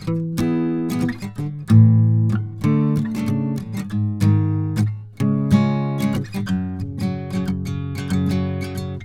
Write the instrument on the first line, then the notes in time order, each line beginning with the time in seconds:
acoustic guitar
0.08 E3
0.39 E3 B3 E4 G#4
0.90 B3 E4
1.39 D3
1.70 A2 E3
2.64 D3 A3
2.97 A3 D4
3.16 C#3 A3 D4
3.29 C#3 A3
3.59 A3
3.92 G#2
4.22 G#2 D#3
5.21 C#3 G#3
5.52 G#3 C#4 F4
5.99 G#3 C#4
6.04 C#3
6.14 C#3
6.35 D3
6.48 F#2
6.81 C#3
7.02 C#3 F#3
7.31 C#3 F#3
7.49 F#2 C#3
7.66 C#3
7.96 F#2 C#3
8.11 F#2 C#3
8.32 C#3 F#3
8.62 F#2 C#3
8.76 F#2 C#3